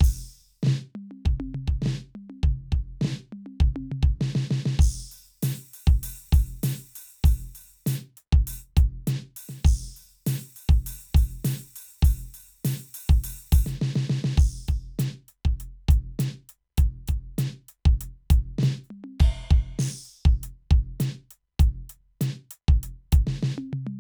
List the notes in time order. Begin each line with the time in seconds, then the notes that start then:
0.01 open hi-hat, kick, crash
0.62 snare, hi-hat pedal
0.67 snare
0.96 mid tom
1.11 high tom
1.26 kick, floor tom
1.40 high tom
1.55 floor tom
1.68 kick
1.82 snare
1.86 snare
2.16 mid tom
2.30 high tom
2.44 kick, floor tom
2.72 kick
3.02 snare
3.05 snare
3.33 mid tom
3.46 high tom
3.60 kick, floor tom
3.76 high tom
3.92 floor tom
4.03 kick
4.21 snare
4.36 snare
4.51 snare
4.66 snare
4.79 kick, crash
5.12 open hi-hat
5.43 open hi-hat, snare
5.74 open hi-hat
5.87 kick
6.03 open hi-hat
6.33 open hi-hat, kick
6.63 open hi-hat, snare
6.96 open hi-hat
7.24 open hi-hat, kick
7.55 open hi-hat
7.87 open hi-hat, snare
8.17 closed hi-hat
8.33 kick
8.47 open hi-hat
8.77 open hi-hat, kick
9.08 closed hi-hat, snare
9.37 open hi-hat
9.49 snare
9.65 kick, crash
9.84 snare
9.89 snare
9.97 open hi-hat
10.27 open hi-hat, snare
10.56 open hi-hat
10.69 kick
10.87 open hi-hat
11.15 open hi-hat, kick
11.45 open hi-hat, snare
11.76 open hi-hat
12.03 open hi-hat, kick
12.34 open hi-hat
12.65 open hi-hat, snare
12.95 open hi-hat
13.10 kick
13.24 open hi-hat
13.53 open hi-hat, kick
13.67 snare, hi-hat pedal
13.82 snare
13.94 snare, hi-hat pedal
14.10 snare
14.25 snare
14.38 kick, crash
14.68 closed hi-hat, kick
14.99 closed hi-hat, snare
15.29 closed hi-hat
15.45 kick, snare
15.60 closed hi-hat
15.89 closed hi-hat, kick
16.20 closed hi-hat, snare
16.49 closed hi-hat
16.78 closed hi-hat, kick
17.08 closed hi-hat, kick
17.39 closed hi-hat, snare
17.69 closed hi-hat
17.86 kick
18.01 closed hi-hat
18.30 closed hi-hat, kick
18.59 snare
18.63 snare, hi-hat pedal
18.84 hi-hat pedal
18.91 mid tom
19.04 high tom
19.20 kick, ride
19.51 kick
19.79 snare, crash
20.05 closed hi-hat
20.25 kick
20.43 closed hi-hat
20.71 kick
21.00 closed hi-hat, snare
21.31 closed hi-hat
21.60 closed hi-hat, kick
21.90 closed hi-hat
22.21 closed hi-hat, snare
22.51 closed hi-hat
22.69 kick
22.83 closed hi-hat
23.12 closed hi-hat, kick
23.27 snare
23.43 snare
23.58 high tom
23.73 floor tom
23.87 mid tom